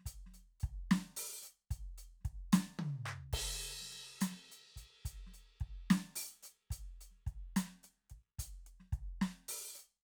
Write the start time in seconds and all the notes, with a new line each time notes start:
0.01 snare
0.07 closed hi-hat, kick
0.27 snare
0.33 closed hi-hat, snare
0.36 snare
0.61 closed hi-hat, kick
0.70 kick
0.92 snare, closed hi-hat
1.18 open hi-hat, snare
1.44 closed hi-hat, hi-hat pedal
1.72 closed hi-hat, kick
1.99 closed hi-hat
2.22 kick, snare
2.26 closed hi-hat
2.54 closed hi-hat, snare
2.64 snare
2.80 high tom
3.07 percussion
3.34 kick, crash
3.63 closed hi-hat
3.83 snare
3.91 snare, closed hi-hat
3.94 snare
4.22 closed hi-hat, snare
4.33 snare
4.53 closed hi-hat
4.77 closed hi-hat, kick
5.06 closed hi-hat, kick
5.28 snare
5.34 closed hi-hat, snare
5.61 kick, closed hi-hat
5.91 closed hi-hat, snare
6.17 open hi-hat
6.44 closed hi-hat, hi-hat pedal
6.72 closed hi-hat, kick
7.02 closed hi-hat
7.12 snare
7.28 kick, closed hi-hat
7.57 closed hi-hat, snare
7.85 snare, closed hi-hat, hi-hat pedal
8.11 kick, closed hi-hat
8.40 closed hi-hat, kick
8.68 closed hi-hat
8.81 snare
8.94 kick, closed hi-hat
8.99 kick
9.23 snare, closed hi-hat
9.50 open hi-hat
9.76 closed hi-hat, hi-hat pedal